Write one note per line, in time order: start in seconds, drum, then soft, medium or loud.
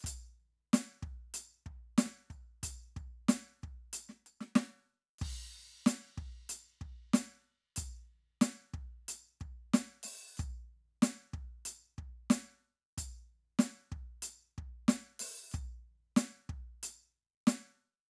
0.01 kick medium
0.01 percussion medium
0.06 percussion loud
0.40 percussion soft
0.73 snare loud
0.73 percussion loud
1.03 kick medium
1.34 percussion loud
1.66 kick soft
1.66 percussion soft
1.98 snare loud
1.98 percussion loud
2.06 snare soft
2.30 kick soft
2.30 percussion soft
2.63 kick soft
2.63 percussion loud
2.96 kick soft
2.96 percussion soft
3.29 snare loud
3.29 percussion loud
3.63 kick soft
3.63 percussion soft
3.93 percussion loud
4.09 snare soft
4.26 percussion medium
4.41 snare soft
4.56 snare loud
5.19 kick medium
5.19 percussion soft
5.19 crash medium
5.86 snare loud
5.86 percussion loud
6.18 kick medium
6.49 percussion loud
6.81 kick soft
6.81 percussion soft
7.14 snare loud
7.14 percussion loud
7.42 percussion soft
7.76 kick medium
7.76 percussion loud
8.06 percussion soft
8.41 snare loud
8.41 percussion loud
8.74 kick medium
8.74 percussion soft
9.08 percussion loud
9.40 kick soft
9.40 percussion soft
9.74 snare loud
9.74 percussion loud
10.03 snare soft
10.03 percussion loud
10.37 kick medium
10.37 percussion medium
10.39 percussion medium
11.02 snare loud
11.02 percussion loud
11.33 kick medium
11.33 percussion soft
11.65 percussion loud
11.98 kick soft
11.98 percussion soft
12.30 snare loud
12.30 percussion loud
12.98 kick medium
12.98 percussion loud
13.59 snare loud
13.59 percussion loud
13.92 kick medium
14.22 percussion loud
14.58 kick soft
14.88 snare loud
14.88 percussion loud
15.19 snare soft
15.19 percussion loud
15.51 percussion medium
15.54 kick medium
15.54 percussion medium
16.17 snare loud
16.17 percussion loud
16.49 kick medium
16.83 percussion loud
17.47 snare loud
17.47 percussion loud